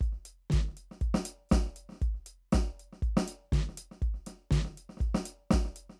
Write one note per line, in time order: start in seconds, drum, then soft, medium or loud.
0.01 kick medium
0.01 closed hi-hat soft
0.13 snare soft
0.25 closed hi-hat medium
0.50 kick medium
0.50 snare medium
0.50 closed hi-hat medium
0.69 snare soft
0.77 closed hi-hat medium
0.92 snare soft
1.01 kick medium
1.01 closed hi-hat soft
1.15 snare medium
1.25 open hi-hat loud
1.49 kick medium
1.49 snare loud
1.49 closed hi-hat medium
1.49 hi-hat pedal soft
1.66 snare soft
1.76 closed hi-hat medium
1.89 snare soft
1.93 snare soft
1.96 snare soft
2.02 kick medium
2.02 closed hi-hat soft
2.15 snare soft
2.26 closed hi-hat medium
2.53 kick medium
2.53 snare loud
2.53 closed hi-hat medium
2.80 closed hi-hat soft
2.93 snare soft
3.02 kick medium
3.02 closed hi-hat soft
3.17 snare loud
3.28 closed hi-hat loud
3.52 kick medium
3.52 snare medium
3.52 closed hi-hat medium
3.69 snare soft
3.78 closed hi-hat loud
3.92 snare soft
4.02 kick medium
4.02 closed hi-hat soft
4.14 snare soft
4.27 snare soft
4.27 closed hi-hat medium
4.51 kick medium
4.51 snare loud
4.51 closed hi-hat medium
4.65 snare soft
4.78 closed hi-hat medium
4.90 snare soft
4.97 kick medium
4.97 snare soft
5.02 closed hi-hat soft
5.15 snare medium
5.26 closed hi-hat loud
5.51 kick medium
5.51 snare loud
5.51 closed hi-hat medium
5.65 snare soft
5.76 closed hi-hat medium
5.90 snare soft